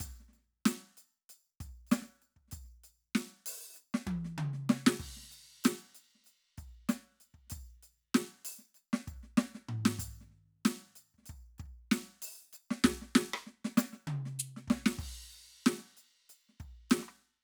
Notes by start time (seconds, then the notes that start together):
0.01 kick, percussion
0.06 kick
0.09 kick
0.20 snare
0.29 snare
0.33 snare, percussion
0.37 snare
0.66 snare, percussion
0.78 snare
0.97 percussion
1.30 percussion
1.61 kick, percussion
1.66 kick
1.69 kick
1.87 percussion
1.92 snare, percussion
2.02 snare
2.22 percussion
2.36 kick
2.48 snare, percussion
2.53 kick
2.64 snare
2.84 percussion
3.15 snare, percussion
3.46 percussion
3.74 percussion
3.76 percussion
3.94 snare
4.07 kick, high tom
4.25 snare
4.38 mid tom
4.54 snare
4.70 snare
4.87 snare
5.00 kick, crash
5.05 kick
5.17 snare
5.23 snare
5.27 snare
5.30 snare, percussion
5.64 snare, percussion
5.95 percussion
6.15 snare
6.21 snare, percussion
6.24 snare, percussion
6.58 kick, percussion
6.89 snare, percussion
7.20 percussion
7.34 kick
7.47 snare
7.49 kick, snare, percussion
7.58 kick
7.83 percussion
8.15 snare, percussion
8.45 percussion
8.59 snare
8.75 percussion
8.77 percussion
8.93 snare
9.08 kick, percussion
9.14 kick
9.17 kick
9.23 snare
9.38 snare
9.55 snare
9.69 floor tom
9.86 snare
9.99 kick, percussion
10.05 kick
10.08 kick
10.21 snare
10.26 snare
10.31 snare
10.35 percussion
10.65 snare, percussion
10.96 percussion
11.14 kick
11.18 snare
11.23 snare, percussion
11.28 kick, snare
11.59 kick, percussion
11.66 kick
11.92 snare, percussion
12.22 percussion
12.53 percussion
12.71 snare
12.84 kick, snare
12.90 kick
13.02 snare
13.15 snare
13.34 high tom
13.47 snare
13.65 snare
13.78 snare, percussion
13.93 snare
14.07 mid tom
14.26 snare
14.39 floor tom
14.57 snare
14.68 kick, snare
14.86 snare
14.99 kick, crash
15.06 kick
15.09 kick
15.31 percussion
15.66 snare
15.78 snare
15.97 percussion
16.30 percussion
16.49 snare
16.53 snare
16.60 kick, percussion
16.90 snare, percussion
16.99 cross-stick, snare
17.09 cross-stick